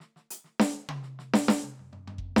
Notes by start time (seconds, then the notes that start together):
0.00 snare
0.16 snare
0.30 closed hi-hat
0.44 snare
0.59 snare
0.74 snare
0.89 high tom
1.02 snare
1.19 snare
1.33 snare
1.48 snare
1.63 high tom
1.79 mid tom
1.93 mid tom
2.07 mid tom
2.18 kick
2.36 snare, floor tom